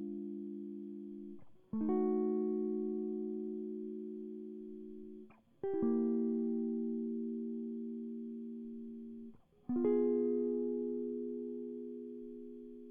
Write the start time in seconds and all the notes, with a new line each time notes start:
1.73 A3
1.81 D#4
1.89 F#4
5.64 G4
5.74 E4
5.83 A#3
9.69 B3
9.76 F4
9.84 G#4